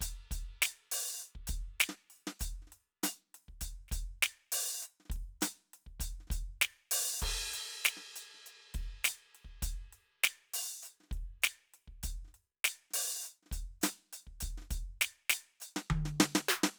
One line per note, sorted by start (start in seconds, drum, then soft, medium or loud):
0.01 closed hi-hat medium
0.01 kick soft
0.31 closed hi-hat medium
0.31 kick soft
0.62 closed hi-hat loud
0.62 snare medium
0.92 open hi-hat loud
1.21 hi-hat pedal soft
1.21 open hi-hat soft
1.35 kick soft
1.47 closed hi-hat medium
1.47 kick soft
1.80 closed hi-hat medium
1.80 snare loud
1.89 snare soft
2.10 open hi-hat soft
2.27 snare medium
2.40 closed hi-hat medium
2.40 kick soft
2.40 hi-hat pedal soft
2.62 snare soft
2.67 snare soft
2.72 closed hi-hat soft
3.03 open hi-hat loud
3.03 snare medium
3.03 hi-hat pedal soft
3.35 closed hi-hat soft
3.48 kick soft
3.61 closed hi-hat medium
3.61 kick soft
3.89 closed hi-hat medium
3.89 kick soft
3.89 snare soft
4.23 closed hi-hat medium
4.23 snare loud
4.52 open hi-hat loud
4.82 hi-hat pedal medium
5.00 snare soft
5.05 snare soft
5.10 kick soft
5.10 closed hi-hat soft
5.16 kick soft
5.41 closed hi-hat medium
5.41 snare medium
5.41 hi-hat pedal soft
5.74 closed hi-hat soft
5.87 kick soft
6.00 closed hi-hat medium
6.00 kick soft
6.20 snare soft
6.27 kick soft
6.27 snare soft
6.32 closed hi-hat soft
6.37 kick soft
6.62 snare loud
6.62 closed hi-hat medium
6.91 open hi-hat loud
7.20 kick soft
7.20 hi-hat pedal medium
7.20 crash medium
7.28 kick soft
7.51 closed hi-hat medium
7.51 snare soft
7.85 open hi-hat medium
7.85 snare loud
7.85 hi-hat pedal medium
7.97 snare soft
8.16 closed hi-hat medium
8.35 snare soft
8.46 open hi-hat soft
8.46 hi-hat pedal soft
8.74 kick soft
8.74 closed hi-hat soft
8.81 kick soft
9.04 closed hi-hat medium
9.04 snare medium
9.04 hi-hat pedal soft
9.35 closed hi-hat soft
9.45 kick soft
9.62 closed hi-hat medium
9.62 kick soft
9.93 closed hi-hat soft
10.24 closed hi-hat medium
10.24 snare loud
10.54 open hi-hat loud
10.83 closed hi-hat soft
10.83 hi-hat pedal medium
11.01 snare soft
11.04 snare soft
11.09 kick soft
11.09 snare soft
11.13 closed hi-hat soft
11.17 kick soft
11.43 closed hi-hat medium
11.43 snare loud
11.43 hi-hat pedal soft
11.74 closed hi-hat soft
11.88 kick soft
12.03 closed hi-hat medium
12.03 kick soft
12.11 kick soft
12.25 snare soft
12.28 snare soft
12.35 closed hi-hat soft
12.64 closed hi-hat medium
12.64 snare medium
12.91 open hi-hat loud
12.91 snare soft
13.23 closed hi-hat soft
13.23 hi-hat pedal soft
13.43 snare soft
13.46 snare soft
13.51 closed hi-hat soft
13.51 kick soft
13.51 snare soft
13.58 kick soft
13.82 closed hi-hat medium
13.82 snare medium
13.82 hi-hat pedal soft
14.13 closed hi-hat soft
14.27 kick soft
14.41 closed hi-hat medium
14.41 kick soft
14.45 snare soft
14.51 kick soft
14.58 snare soft
14.62 snare soft
14.70 closed hi-hat medium
14.70 kick soft
14.70 snare soft
14.77 kick soft
15.01 closed hi-hat medium
15.01 snare medium
15.30 open hi-hat loud
15.30 snare medium
15.60 closed hi-hat medium
15.60 hi-hat pedal soft
15.76 snare medium
15.90 kick soft
15.90 high tom loud
15.97 kick soft
16.06 snare soft
16.20 snare loud
16.35 snare loud
16.49 snare medium
16.64 snare loud